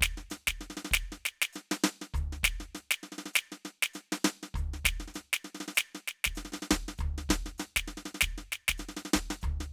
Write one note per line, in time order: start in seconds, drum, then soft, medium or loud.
0.01 kick soft
0.01 snare loud
0.08 kick soft
0.18 snare soft
0.30 snare medium
0.30 hi-hat pedal medium
0.47 kick soft
0.47 snare loud
0.61 snare soft
0.70 snare soft
0.77 snare medium
0.85 snare medium
0.91 kick soft
0.91 snare loud
0.91 hi-hat pedal soft
0.97 kick soft
1.12 snare soft
1.26 snare medium
1.42 snare loud
1.53 snare soft
1.53 hi-hat pedal soft
1.71 snare medium
1.84 snare loud
2.02 snare soft
2.14 kick soft
2.14 floor tom medium
2.14 hi-hat pedal soft
2.20 kick soft
2.23 kick soft
2.33 snare soft
2.44 kick soft
2.44 snare loud
2.60 snare soft
2.75 snare soft
2.75 hi-hat pedal soft
2.91 snare loud
3.03 snare soft
3.12 snare soft
3.18 snare medium
3.26 snare soft
3.34 snare loud
3.34 hi-hat pedal soft
3.52 snare soft
3.65 snare soft
3.83 snare loud
3.94 snare soft
3.94 hi-hat pedal soft
4.12 snare medium
4.25 snare loud
4.43 snare soft
4.54 kick soft
4.54 floor tom medium
4.54 hi-hat pedal soft
4.61 kick soft
4.64 kick soft
4.74 snare soft
4.85 kick soft
4.85 snare loud
4.92 kick soft
5.00 snare soft
5.08 snare soft
5.14 snare medium
5.14 hi-hat pedal soft
5.33 snare loud
5.45 snare soft
5.55 snare soft
5.60 snare medium
5.68 snare medium
5.75 snare loud
5.75 hi-hat pedal soft
5.95 snare soft
6.08 snare medium
6.24 kick soft
6.24 snare loud
6.35 snare soft
6.35 hi-hat pedal soft
6.45 snare soft
6.52 snare soft
6.52 snare medium
6.71 kick soft
6.71 snare loud
6.78 kick soft
6.88 snare medium
6.98 kick soft
6.98 floor tom medium
6.98 hi-hat pedal soft
7.06 kick soft
7.18 snare soft
7.29 kick medium
7.29 snare loud
7.36 kick soft
7.39 kick soft
7.46 snare soft
7.58 snare medium
7.58 hi-hat pedal soft
7.76 kick soft
7.76 snare loud
7.88 snare soft
7.97 snare soft
8.06 snare medium
8.15 snare soft
8.21 kick soft
8.21 snare loud
8.21 hi-hat pedal soft
8.28 kick soft
8.32 kick soft
8.38 snare soft
8.52 snare medium
8.68 kick soft
8.68 snare loud
8.78 snare soft
8.78 hi-hat pedal soft
8.89 snare soft
8.97 snare medium
9.05 snare soft
9.14 kick soft
9.14 snare loud
9.30 snare medium
9.42 kick soft
9.42 floor tom loud
9.42 hi-hat pedal soft
9.50 kick soft
9.61 snare soft